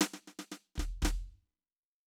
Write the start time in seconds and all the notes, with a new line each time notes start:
0.01 snare
0.13 snare
0.27 snare
0.39 snare
0.52 snare
0.75 kick, snare
0.79 snare
1.02 kick, snare
1.05 snare